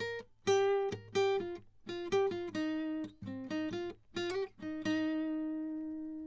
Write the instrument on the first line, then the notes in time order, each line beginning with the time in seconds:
acoustic guitar
0.02 A#4
0.49 G4
0.94 A#4
1.17 G4
1.42 F4
1.91 F4
2.14 G4
2.33 F4
2.56 D#4
3.29 C4
3.52 D#4
3.75 F4
4.18 F4
4.32 G4
4.65 D#4
4.87 D#4